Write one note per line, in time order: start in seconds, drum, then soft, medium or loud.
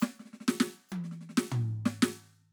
0.01 cross-stick medium
0.01 snare loud
0.01 percussion medium
0.20 snare soft
0.26 snare soft
0.34 snare soft
0.41 snare soft
0.48 snare loud
0.61 snare loud
0.89 high tom loud
0.89 percussion soft
1.04 snare soft
1.12 snare soft
1.21 snare soft
1.30 snare soft
1.38 snare loud
1.52 floor tom loud
1.86 snare loud
2.03 snare loud